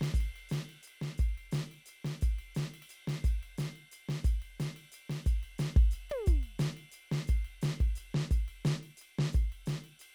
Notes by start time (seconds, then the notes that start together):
0.01 snare, ride
0.14 kick, hi-hat pedal
0.20 ride
0.36 ride
0.49 snare, hi-hat pedal, ride
0.69 ride
0.83 hi-hat pedal
0.87 ride
1.01 snare, ride
1.18 kick, hi-hat pedal, ride
1.37 ride
1.51 snare, hi-hat pedal, ride
1.71 ride
1.86 hi-hat pedal, ride
2.04 snare, ride
2.21 kick, hi-hat pedal, ride
2.38 ride
2.55 snare, hi-hat pedal, ride
2.74 ride
2.82 ride
2.89 hi-hat pedal, ride
3.07 snare, ride
3.24 kick, hi-hat pedal, ride
3.42 ride
3.58 snare, hi-hat pedal, ride
3.75 ride
3.91 hi-hat pedal, ride
4.09 snare, ride
4.24 kick, hi-hat pedal, ride
4.42 ride
4.60 snare, hi-hat pedal, ride
4.76 ride
4.92 hi-hat pedal, ride
5.09 snare, ride
5.26 kick, hi-hat pedal, ride
5.43 ride
5.58 snare, hi-hat pedal, ride
5.76 kick, ride
5.91 hi-hat pedal, ride
6.10 high tom, ride
6.26 kick, hi-hat pedal, ride
6.43 ride
6.59 snare, hi-hat pedal, ride
6.76 ride
6.91 hi-hat pedal, ride
7.11 snare, ride
7.27 kick, hi-hat pedal, ride
7.44 ride
7.61 snare, hi-hat pedal, ride
7.80 kick, ride
7.95 hi-hat pedal, ride
8.14 snare
8.31 kick, hi-hat pedal, ride
8.48 ride
8.65 snare, hi-hat pedal
8.83 ride
8.97 hi-hat pedal
9.01 ride
9.19 snare
9.33 kick, hi-hat pedal, ride
9.52 ride
9.66 snare, hi-hat pedal, ride
9.84 ride
9.99 hi-hat pedal, ride